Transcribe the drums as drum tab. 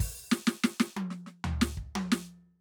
HH |o---------------|
SD |--oooo-og-o--o--|
T1 |------o-----o---|
FT |---------o------|
BD |o----------o----|